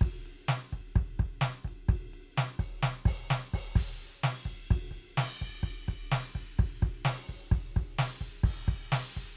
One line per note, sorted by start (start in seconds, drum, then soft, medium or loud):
0.01 kick loud
0.01 ride medium
0.25 ride medium
0.48 snare loud
0.48 hi-hat pedal soft
0.48 ride medium
0.72 kick medium
0.72 ride medium
0.96 kick loud
0.96 ride medium
1.19 kick loud
1.19 ride medium
1.41 snare loud
1.41 ride soft
1.64 kick medium
1.64 ride medium
1.89 kick loud
1.89 ride loud
2.13 ride medium
2.37 snare loud
2.37 ride medium
2.59 open hi-hat medium
2.59 kick loud
2.83 snare loud
3.05 open hi-hat loud
3.05 kick loud
3.30 snare loud
3.54 open hi-hat loud
3.54 kick loud
3.75 kick loud
3.75 crash medium
4.02 ride soft
4.20 snare loud
4.20 hi-hat pedal soft
4.24 ride medium
4.45 kick medium
4.45 ride medium
4.70 kick loud
4.70 ride loud
4.91 kick soft
5.17 snare loud
5.17 crash loud
5.24 snare soft
5.41 kick medium
5.41 ride soft
5.63 kick medium
5.63 ride medium
5.84 snare soft
5.84 ride medium
5.88 kick medium
6.12 snare loud
6.12 crash medium
6.35 kick medium
6.35 ride medium
6.58 kick loud
6.58 ride medium
6.82 kick loud
6.82 ride medium
7.05 open hi-hat loud
7.05 snare loud
7.29 kick medium
7.29 ride medium
7.51 kick loud
7.51 ride soft
7.76 kick loud
7.76 ride medium
7.98 snare loud
7.98 crash loud
8.21 kick medium
8.43 kick loud
8.43 crash medium
8.68 kick loud
8.92 snare loud
8.92 crash loud
9.16 kick medium